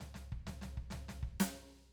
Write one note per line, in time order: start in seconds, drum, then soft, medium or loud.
0.00 snare soft
0.00 floor tom medium
0.14 snare soft
0.14 floor tom soft
0.32 kick soft
0.47 snare soft
0.47 floor tom medium
0.61 snare soft
0.61 floor tom soft
0.77 kick soft
0.90 snare soft
0.90 floor tom medium
1.08 snare soft
1.08 floor tom medium
1.23 kick soft
1.40 open hi-hat loud
1.40 snare loud